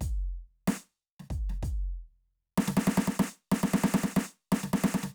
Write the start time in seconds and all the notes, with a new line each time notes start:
0.01 closed hi-hat, kick
0.67 closed hi-hat, snare
1.19 snare
1.30 closed hi-hat, kick
1.49 snare
1.63 closed hi-hat, kick
2.57 snare
2.67 snare
2.77 snare
2.87 snare
2.97 snare
3.19 snare
3.51 snare
3.63 snare
3.73 snare
3.94 snare
4.03 snare
4.16 snare
4.52 snare
4.63 snare
4.73 snare
4.84 snare
4.94 snare
5.03 snare